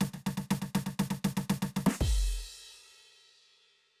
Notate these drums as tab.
CC |----------------|x---------------|
SD |oooooooooooooooo|----------------|
BD |----------------|o---------------|